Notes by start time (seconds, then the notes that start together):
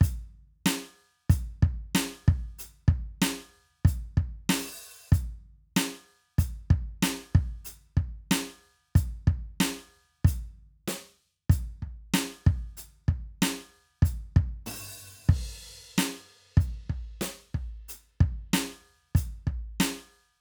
0.01 closed hi-hat, kick
0.66 closed hi-hat, snare
1.30 closed hi-hat, kick
1.63 kick
1.95 closed hi-hat, snare
2.28 kick
2.59 closed hi-hat
2.88 kick
3.22 closed hi-hat, snare
3.85 closed hi-hat, kick
4.17 kick
4.49 open hi-hat, snare
5.09 kick, hi-hat pedal
5.13 closed hi-hat
5.76 closed hi-hat, snare
6.38 closed hi-hat, kick
6.70 kick
7.03 closed hi-hat, snare
7.35 kick
7.65 closed hi-hat
7.97 kick
8.31 closed hi-hat, snare
8.95 closed hi-hat, kick
9.27 kick
9.60 closed hi-hat, snare
10.25 closed hi-hat, kick
10.88 closed hi-hat, snare
11.50 closed hi-hat, kick
11.82 kick
12.14 closed hi-hat, snare
12.47 kick
12.77 closed hi-hat
13.08 kick
13.42 closed hi-hat, snare
14.02 closed hi-hat, kick
14.36 kick
14.66 open hi-hat, floor tom
15.28 kick, hi-hat pedal, crash
15.98 closed hi-hat, snare
16.57 closed hi-hat, kick
16.90 kick
17.21 closed hi-hat, snare
17.55 kick
17.88 closed hi-hat
18.21 kick
18.53 closed hi-hat, snare
19.15 closed hi-hat, kick
19.47 kick
19.80 closed hi-hat, snare